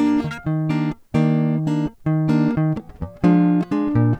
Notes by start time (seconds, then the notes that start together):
0.00 A#3 D4 G4
0.26 D#3
0.48 D#3
0.71 A#3 D4 G4
1.16 D#3 A#3 D4 G4
1.69 A#3 D4 G4
2.08 D#3
2.30 A#3 D4 G4
2.58 D#3
3.25 F3 G#3 D4 F4
3.73 G#3 D4 F4
3.97 A#2